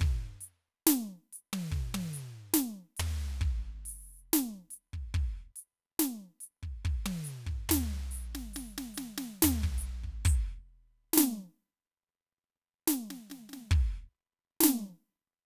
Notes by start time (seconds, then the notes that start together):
0.01 kick
0.41 hi-hat pedal
0.87 snare
1.33 hi-hat pedal
1.53 high tom
1.72 kick
1.94 high tom
2.13 hi-hat pedal
2.54 snare
2.97 floor tom, hi-hat pedal
3.41 kick
3.50 kick
3.85 hi-hat pedal
4.33 snare
4.71 hi-hat pedal
4.93 kick
5.14 kick
5.56 hi-hat pedal
5.99 snare
6.40 hi-hat pedal
6.63 kick
6.85 kick
7.06 high tom
7.24 hi-hat pedal
7.47 kick
7.69 snare, floor tom
8.11 hi-hat pedal
8.35 snare
8.53 snare, hi-hat pedal
8.78 snare
8.94 snare, hi-hat pedal
9.18 snare
9.42 snare, floor tom
9.63 kick
9.78 hi-hat pedal
10.04 kick
10.25 open hi-hat, kick
10.45 kick
11.13 snare
11.18 snare
12.88 snare
13.10 snare
13.30 snare
13.49 snare
13.53 snare
13.71 kick
14.61 snare
14.64 snare